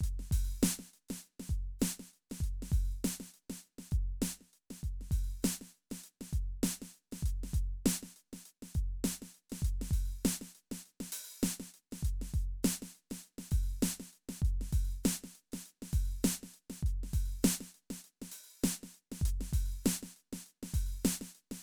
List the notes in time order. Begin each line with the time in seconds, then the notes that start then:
0.01 closed hi-hat, kick
0.19 snare
0.31 open hi-hat, kick
0.60 snare, hi-hat pedal
0.65 closed hi-hat
0.79 snare
0.93 closed hi-hat
1.09 snare, closed hi-hat
1.23 closed hi-hat
1.40 snare
1.49 kick, closed hi-hat
1.79 closed hi-hat, snare, hi-hat pedal
1.99 snare
2.13 closed hi-hat
2.30 snare, closed hi-hat
2.40 closed hi-hat, kick
2.62 snare
2.72 kick, open hi-hat
3.04 open hi-hat, snare, hi-hat pedal
3.20 snare
3.34 closed hi-hat
3.50 snare, closed hi-hat
3.63 closed hi-hat
3.78 snare
3.91 kick, closed hi-hat
4.22 closed hi-hat, snare
4.41 snare
4.53 closed hi-hat
4.70 snare, closed hi-hat
4.83 kick, closed hi-hat
5.01 snare
5.11 kick, open hi-hat
5.42 closed hi-hat, snare, hi-hat pedal
5.61 snare
5.74 closed hi-hat
5.90 snare, closed hi-hat
6.04 closed hi-hat
6.21 snare
6.33 kick, closed hi-hat
6.63 closed hi-hat, snare
6.82 snare
6.94 closed hi-hat
7.12 snare, closed hi-hat
7.23 closed hi-hat, kick
7.43 snare
7.53 closed hi-hat, kick
7.86 closed hi-hat, snare, hi-hat pedal
8.03 snare
8.16 closed hi-hat
8.33 snare, closed hi-hat
8.45 closed hi-hat
8.62 snare
8.75 kick, closed hi-hat
8.84 kick
9.04 closed hi-hat, snare
9.22 snare
9.34 closed hi-hat
9.50 snare, closed hi-hat
9.62 closed hi-hat, kick
9.81 snare
9.91 kick, open hi-hat
10.25 closed hi-hat, snare, hi-hat pedal
10.41 snare
10.55 closed hi-hat
10.71 snare, closed hi-hat
10.86 closed hi-hat
11.00 snare
11.12 open hi-hat
11.42 closed hi-hat, snare, hi-hat pedal
11.60 snare
11.74 closed hi-hat
11.91 snare, closed hi-hat
12.03 closed hi-hat, kick
12.21 snare
12.34 kick, open hi-hat
12.63 closed hi-hat, snare, hi-hat pedal
12.82 snare
12.95 closed hi-hat
13.10 snare, closed hi-hat
13.23 closed hi-hat
13.38 snare
13.51 kick, open hi-hat
13.82 closed hi-hat, snare, hi-hat pedal
14.00 snare
14.13 closed hi-hat
14.29 snare
14.42 kick, closed hi-hat
14.61 snare
14.72 kick, open hi-hat
15.04 closed hi-hat, snare, hi-hat pedal
15.24 snare
15.35 closed hi-hat
15.52 snare, closed hi-hat
15.66 closed hi-hat
15.82 snare
15.93 kick, open hi-hat
16.23 closed hi-hat, snare, hi-hat pedal
16.43 snare
16.54 closed hi-hat
16.70 snare, closed hi-hat
16.83 kick, closed hi-hat
17.03 snare
17.13 kick, open hi-hat
17.43 closed hi-hat, snare, hi-hat pedal
17.60 snare
17.74 closed hi-hat
17.90 snare, closed hi-hat
18.04 closed hi-hat
18.22 snare
18.32 open hi-hat
18.63 closed hi-hat, snare, hi-hat pedal
18.83 snare
18.94 closed hi-hat
19.12 snare, closed hi-hat
19.21 kick, closed hi-hat
19.41 snare
19.53 kick, open hi-hat
19.84 closed hi-hat, snare, hi-hat pedal
20.03 snare
20.16 closed hi-hat
20.33 snare, closed hi-hat
20.46 closed hi-hat
20.63 snare
20.74 kick, open hi-hat
21.04 closed hi-hat, snare, hi-hat pedal
21.21 snare
21.35 closed hi-hat
21.51 snare, closed hi-hat